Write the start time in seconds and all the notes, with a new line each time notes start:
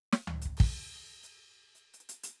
0.13 snare
0.27 floor tom
0.42 closed hi-hat, kick
0.57 kick, crash
1.23 hi-hat pedal
1.75 hi-hat pedal
1.94 closed hi-hat
2.00 closed hi-hat
2.09 closed hi-hat
2.24 closed hi-hat